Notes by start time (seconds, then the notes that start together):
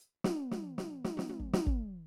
0.00 hi-hat pedal
0.24 snare, floor tom
0.52 snare, floor tom
0.78 snare, floor tom
1.04 snare, floor tom
1.16 snare, floor tom
1.27 floor tom, hi-hat pedal
1.31 snare
1.40 kick
1.53 snare, floor tom
1.67 kick